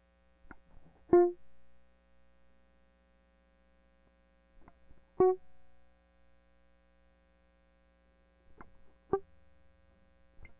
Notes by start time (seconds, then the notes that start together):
1.13 F4
5.20 F#4
9.13 G4